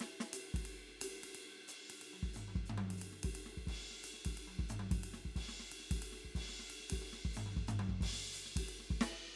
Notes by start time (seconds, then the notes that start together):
0.01 snare, ride
0.21 snare
0.34 hi-hat pedal, ride
0.55 kick, ride
0.66 ride
0.89 snare
1.02 hi-hat pedal, ride
1.24 ride
1.35 ride
1.58 snare
1.69 hi-hat pedal, ride
1.91 ride
2.02 ride
2.14 high tom
2.23 kick
2.34 floor tom, hi-hat pedal
2.49 high tom
2.56 kick
2.66 floor tom, hi-hat pedal
2.78 high tom
2.91 ride
2.98 hi-hat pedal
3.02 ride
3.13 snare
3.24 kick, ride
3.33 hi-hat pedal, ride
3.46 snare
3.58 kick
3.68 kick, ride
3.82 snare
3.91 snare
4.04 hi-hat pedal, ride
4.14 snare
4.25 kick, ride
4.38 ride
4.48 high tom
4.60 kick
4.70 floor tom, hi-hat pedal
4.80 high tom
4.92 kick, ride
5.04 ride
5.14 snare
5.26 kick
5.37 kick, ride
5.49 snare
5.60 snare
5.72 ride
5.80 snare
5.92 kick, ride
6.03 ride
6.13 snare
6.25 kick
6.36 kick, ride
6.49 snare
6.60 snare
6.71 ride
6.80 snare
6.91 kick, ride
7.01 ride
7.13 snare
7.26 kick
7.34 floor tom, hi-hat pedal
7.47 high tom
7.57 kick
7.68 floor tom, hi-hat pedal
7.80 high tom
7.90 kick
8.01 kick, ride
8.13 snare
8.27 snare
8.34 hi-hat pedal, ride
8.46 snare
8.57 kick, ride
8.69 ride
8.80 snare
8.91 kick
9.02 snare, crash
9.28 snare